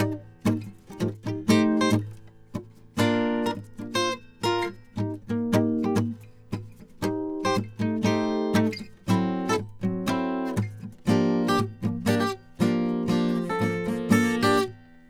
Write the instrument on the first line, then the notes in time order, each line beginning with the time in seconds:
acoustic guitar
0.00 D#4 G4 D5
0.47 A#3 D#4 G4
1.01 F3 A3 D#4 G4
1.27 D#4 G4
1.50 A3 D#4 G4 C5
1.82 G4 C5
1.92 A3 D#4
2.99 A#3 D4 F4 A#4
3.47 A#4
3.80 A#3 D4 F4
3.96 F4 C5
4.45 D4 F4 A#4
4.97 D#4 G4
5.31 A#3 D#4
5.54 A#3 D#4 G4
5.86 G4
5.97 A#3 E4 G4
7.04 D#4 G4 C5
7.46 G4 C5
7.81 A3 D#4 G4
8.04 A3 D#4 G4 C5
8.55 A3 D#4 G4 C5
9.08 F#3 C4 E4 A4
9.51 E4 A4
9.84 F#3 C4
10.08 F#3 C4 E4 A4
11.09 F3 A#3 D4 G4
11.49 D4 G4
11.85 F3 A#3 D4
12.07 A#3 D4 G4
12.21 G4
12.62 F3 A#3 D4 G4
13.10 F3 A#3 D4 G4
13.51 A4
13.62 F3 A#3 C#4 A4
13.87 F3 A#3 D4
14.11 F3 A#3 D4 A4
14.44 D4 G4